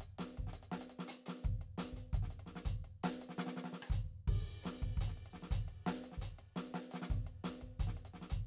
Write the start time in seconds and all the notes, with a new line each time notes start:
0.01 closed hi-hat
0.19 snare, closed hi-hat
0.37 kick, closed hi-hat
0.47 snare
0.54 closed hi-hat
0.63 closed hi-hat
0.72 snare
0.81 closed hi-hat
0.90 closed hi-hat
0.99 snare
1.08 closed hi-hat
1.26 closed hi-hat, snare
1.44 kick, closed hi-hat
1.61 closed hi-hat
1.78 closed hi-hat, snare
1.93 closed hi-hat, kick
2.13 kick, closed hi-hat
2.23 snare
2.31 closed hi-hat
2.40 closed hi-hat
2.46 snare
2.56 snare
2.65 closed hi-hat, kick
2.84 closed hi-hat
3.04 closed hi-hat, snare
3.22 closed hi-hat
3.29 snare
3.38 snare
3.47 snare
3.57 snare
3.64 snare
3.73 snare
3.83 cross-stick
3.90 closed hi-hat, kick
4.28 kick, crash
4.63 closed hi-hat, snare, hi-hat pedal
4.82 kick, closed hi-hat
4.97 closed hi-hat, kick
5.08 snare
5.17 closed hi-hat
5.26 closed hi-hat
5.34 snare
5.43 snare
5.51 closed hi-hat, kick
5.68 closed hi-hat
5.87 snare, closed hi-hat
6.04 closed hi-hat
6.12 snare
6.18 closed hi-hat, kick
6.39 closed hi-hat
6.56 snare, closed hi-hat
6.74 snare, closed hi-hat
6.92 snare, closed hi-hat
7.02 snare
7.10 kick, closed hi-hat
7.27 closed hi-hat
7.44 closed hi-hat, snare
7.61 kick, closed hi-hat
7.80 closed hi-hat, kick
7.87 snare
7.97 closed hi-hat
8.05 closed hi-hat
8.14 snare
8.22 snare
8.30 closed hi-hat, kick